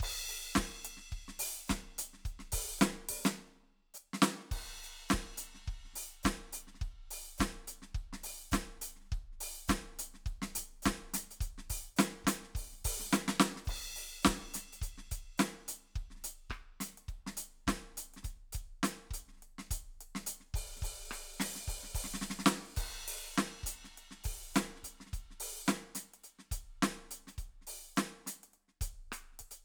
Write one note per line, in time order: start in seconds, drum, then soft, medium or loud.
0.00 kick medium
0.00 hi-hat pedal soft
0.00 crash loud
0.28 open hi-hat medium
0.54 kick soft
0.54 snare loud
0.54 hi-hat pedal medium
0.85 closed hi-hat medium
0.97 snare soft
1.12 kick soft
1.12 closed hi-hat soft
1.28 snare soft
1.39 open hi-hat loud
1.68 kick soft
1.68 snare loud
1.68 hi-hat pedal medium
1.98 closed hi-hat loud
2.13 snare soft
2.18 snare soft
2.21 closed hi-hat soft
2.21 kick soft
2.21 snare soft
2.39 snare soft
2.52 open hi-hat loud
2.52 kick soft
2.78 snare loud
2.78 hi-hat pedal medium
3.09 kick soft
3.09 open hi-hat loud
3.24 snare loud
3.24 hi-hat pedal medium
3.94 hi-hat pedal medium
4.13 snare medium
4.22 snare loud
4.39 snare soft
4.51 kick medium
4.51 crash medium
4.83 open hi-hat medium
5.09 snare loud
5.09 hi-hat pedal medium
5.13 kick soft
5.37 closed hi-hat medium
5.54 snare soft
5.67 kick soft
5.85 snare soft
5.93 open hi-hat loud
5.93 snare soft
6.23 kick soft
6.23 snare loud
6.23 hi-hat pedal medium
6.53 open hi-hat loud
6.67 snare soft
6.74 snare soft
6.80 kick medium
6.80 snare soft
6.80 closed hi-hat soft
7.10 open hi-hat medium
7.38 kick soft
7.38 snare medium
7.38 hi-hat pedal medium
7.67 closed hi-hat medium
7.82 snare soft
7.94 kick medium
7.94 closed hi-hat soft
8.13 snare soft
8.23 open hi-hat medium
8.51 kick medium
8.51 snare medium
8.51 hi-hat pedal medium
8.81 open hi-hat loud
8.95 snare soft
9.00 snare soft
9.04 snare soft
9.08 snare soft
9.10 kick medium
9.10 snare soft
9.10 closed hi-hat soft
9.32 snare soft
9.39 open hi-hat loud
9.39 snare soft
9.68 kick soft
9.68 snare loud
9.68 hi-hat pedal medium
9.99 closed hi-hat loud
10.14 snare soft
10.26 kick medium
10.26 closed hi-hat soft
10.42 snare medium
10.55 closed hi-hat loud
10.55 kick soft
10.82 kick soft
10.82 snare loud
10.82 hi-hat pedal medium
11.13 closed hi-hat loud
11.13 snare medium
11.31 closed hi-hat medium
11.40 closed hi-hat medium
11.40 kick medium
11.58 snare soft
11.70 open hi-hat loud
11.70 kick soft
11.96 closed hi-hat medium
11.96 snare loud
11.96 hi-hat pedal medium
12.24 closed hi-hat loud
12.24 kick soft
12.24 snare loud
12.43 snare soft
12.55 open hi-hat medium
12.55 kick soft
12.72 snare soft
12.84 open hi-hat loud
12.84 kick medium
12.99 snare soft
13.05 snare soft
13.09 snare soft
13.09 hi-hat pedal medium
13.13 snare loud
13.28 snare loud
13.40 snare loud
13.56 snare soft
13.65 kick medium
13.65 hi-hat pedal soft
13.65 crash medium
13.95 open hi-hat medium
14.22 snare loud
14.22 hi-hat pedal medium
14.27 kick soft
14.54 closed hi-hat loud
14.54 snare soft
14.73 closed hi-hat soft
14.81 closed hi-hat medium
14.81 kick soft
14.98 snare soft
15.11 closed hi-hat medium
15.11 kick soft
15.38 snare loud
15.38 hi-hat pedal soft
15.68 closed hi-hat loud
15.95 kick soft
15.95 closed hi-hat soft
16.10 snare soft
16.15 snare soft
16.24 closed hi-hat loud
16.24 snare soft
16.50 kick soft
16.50 cross-stick medium
16.80 open hi-hat loud
16.80 snare medium
16.97 closed hi-hat soft
17.08 kick soft
17.08 closed hi-hat soft
17.26 snare medium
17.37 closed hi-hat loud
17.67 kick soft
17.67 snare medium
17.67 closed hi-hat soft
17.97 closed hi-hat medium
18.14 snare soft
18.14 closed hi-hat soft
18.23 open hi-hat medium
18.23 kick soft
18.23 snare soft
18.52 closed hi-hat medium
18.52 kick soft
18.83 closed hi-hat medium
18.83 snare medium
19.10 closed hi-hat medium
19.10 kick soft
19.28 snare soft
19.32 snare soft
19.36 snare soft
19.39 snare soft
19.39 closed hi-hat soft
19.58 snare soft
19.70 closed hi-hat loud
19.70 kick soft
20.00 closed hi-hat medium
20.15 snare medium
20.26 closed hi-hat loud
20.40 snare soft
20.54 open hi-hat medium
20.54 kick medium
20.76 snare soft
20.80 open hi-hat medium
20.80 kick soft
20.80 snare soft
21.11 open hi-hat medium
21.11 cross-stick medium
21.40 open hi-hat loud
21.40 snare medium
21.55 snare soft
21.68 open hi-hat medium
21.68 kick soft
21.83 snare soft
21.95 open hi-hat loud
21.95 kick soft
22.04 snare soft
22.14 snare medium
22.21 snare medium
22.30 snare medium
22.39 snare medium
22.46 snare loud
22.76 kick medium
22.76 hi-hat pedal medium
22.76 crash medium
23.08 open hi-hat loud
23.34 snare loud
23.34 hi-hat pedal soft
23.63 closed hi-hat loud
23.63 kick soft
23.84 snare soft
23.84 closed hi-hat soft
23.97 closed hi-hat soft
24.11 snare soft
24.24 open hi-hat medium
24.24 kick medium
24.54 snare loud
24.54 closed hi-hat medium
24.54 hi-hat pedal medium
24.75 snare soft
24.83 closed hi-hat medium
24.83 kick soft
25.00 snare soft
25.06 snare soft
25.11 closed hi-hat soft
25.11 kick soft
25.11 snare soft
25.30 snare soft
25.40 open hi-hat medium
25.66 snare loud
25.66 hi-hat pedal soft
25.95 closed hi-hat loud
25.95 snare soft
26.13 closed hi-hat soft
26.23 closed hi-hat medium
26.39 snare soft
26.51 closed hi-hat medium
26.51 kick soft
26.82 snare loud
26.82 closed hi-hat soft
27.11 closed hi-hat medium
27.27 closed hi-hat soft
27.27 snare soft
27.38 closed hi-hat soft
27.38 kick soft
27.61 snare soft
27.67 open hi-hat medium
27.96 snare loud
27.96 hi-hat pedal medium
28.26 closed hi-hat medium
28.26 snare soft
28.43 closed hi-hat soft
28.53 closed hi-hat soft
28.68 snare soft
28.81 closed hi-hat medium
28.81 kick medium
29.12 closed hi-hat medium
29.12 cross-stick medium
29.32 snare soft
29.39 kick soft
29.39 closed hi-hat medium
29.51 closed hi-hat medium